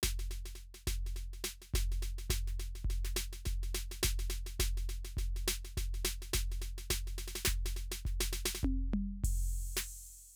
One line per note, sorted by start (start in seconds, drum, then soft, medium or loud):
0.03 kick soft
0.03 snare loud
0.19 snare soft
0.31 snare soft
0.45 snare soft
0.55 snare soft
0.74 snare soft
0.87 kick medium
0.87 snare medium
1.06 snare soft
1.16 snare soft
1.33 snare soft
1.44 snare medium
1.62 snare soft
1.74 kick medium
1.74 snare medium
1.92 snare soft
2.02 snare medium
2.18 snare soft
2.30 kick medium
2.30 snare loud
2.47 snare soft
2.59 snare soft
2.75 snare soft
2.85 kick medium
2.90 snare soft
3.05 snare soft
3.16 snare loud
3.33 snare soft
3.45 kick medium
3.45 snare medium
3.63 snare soft
3.74 snare medium
3.91 snare soft
4.03 kick medium
4.03 snare loud
4.19 snare soft
4.30 snare medium
4.46 snare soft
4.60 kick medium
4.60 snare loud
4.77 snare soft
4.89 snare soft
5.05 snare soft
5.17 kick medium
5.17 snare soft
5.36 snare soft
5.48 snare loud
5.65 snare soft
5.77 kick medium
5.77 snare medium
5.94 snare soft
6.05 snare loud
6.22 snare soft
6.33 kick soft
6.33 snare loud
6.52 snare soft
6.78 snare soft
6.90 kick soft
6.90 snare loud
7.07 snare soft
7.18 snare medium
7.28 snare medium
7.35 snare medium
7.45 kick medium
7.45 snare loud
7.66 snare medium
7.76 snare soft
7.92 snare medium
8.05 kick medium
8.05 snare soft
8.20 snare loud
8.33 snare medium
8.45 snare loud
8.55 snare medium
8.63 kick medium
8.63 high tom loud
8.93 mid tom loud
9.24 kick medium
9.24 crash loud
9.54 open hi-hat soft
9.77 open hi-hat medium
9.77 snare medium
10.05 open hi-hat soft